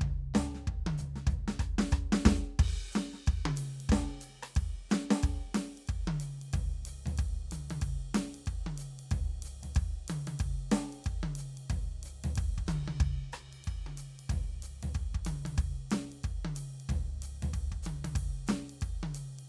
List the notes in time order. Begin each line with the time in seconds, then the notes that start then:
0.01 kick, floor tom
0.34 snare, floor tom, hi-hat pedal
0.55 snare
0.67 kick, floor tom
0.86 high tom
0.98 floor tom, hi-hat pedal
1.16 snare
1.27 kick, floor tom, hi-hat pedal
1.48 snare
1.59 kick, cross-stick, hi-hat pedal
1.78 snare
1.91 kick, cross-stick, hi-hat pedal
2.12 snare
2.21 snare, hi-hat pedal
2.25 kick
2.59 kick, crash
2.91 kick, snare, hi-hat pedal
3.13 snare
3.27 kick, ride
3.45 high tom
3.56 hi-hat pedal, ride
3.80 ride
3.89 kick, snare, ride
4.08 snare
4.21 hi-hat pedal, ride
4.43 cross-stick, ride
4.55 kick, ride
4.89 snare, hi-hat pedal, ride
5.10 snare
5.23 kick, ride
5.54 snare, hi-hat pedal, ride
5.77 ride
5.88 kick, ride
6.07 high tom
6.20 hi-hat pedal, ride
6.41 ride
6.53 kick, floor tom, ride
6.85 hi-hat pedal, ride
7.06 floor tom, ride
7.18 kick, ride
7.51 hi-hat pedal, high tom, ride
7.70 high tom, ride
7.81 kick, ride
8.14 snare, hi-hat pedal, ride
8.34 ride
8.46 kick, ride
8.66 high tom
8.78 hi-hat pedal, ride
8.99 ride
9.11 kick, floor tom, ride
9.42 hi-hat pedal, ride
9.63 floor tom, ride
9.75 kick, ride
10.08 hi-hat pedal, high tom, ride
10.27 high tom, ride
10.39 kick, ride
10.71 snare, hi-hat pedal, ride
10.92 ride
11.04 kick, ride
11.23 high tom
11.35 hi-hat pedal, ride
11.57 ride
11.70 kick, floor tom, ride
12.03 hi-hat pedal, ride
12.24 floor tom, ride
12.36 kick, ride
12.58 kick
12.67 hi-hat pedal, high tom, ride
12.88 high tom
13.00 kick, ride
13.32 cross-stick, hi-hat pedal, ride
13.53 ride
13.64 kick, ride
13.86 high tom
13.97 hi-hat pedal, ride
14.19 ride
14.29 kick, floor tom, ride
14.62 hi-hat pedal, ride
14.83 floor tom, ride
14.95 kick, ride
15.14 kick
15.25 hi-hat pedal, high tom, ride
15.45 high tom, ride
15.58 kick, ride
15.90 snare, hi-hat pedal, ride
16.12 ride
16.24 kick, ride
16.45 high tom
16.55 hi-hat pedal, ride
16.80 ride
16.89 kick, floor tom, ride
17.22 hi-hat pedal, ride
17.42 floor tom, ride
17.53 kick, ride
17.72 kick
17.83 hi-hat pedal, high tom, ride
18.04 high tom, ride
18.15 kick, ride
18.38 kick
18.47 snare, hi-hat pedal, ride
18.52 kick
18.69 ride
18.81 kick, ride
19.03 high tom
19.14 hi-hat pedal, ride
19.22 kick
19.39 ride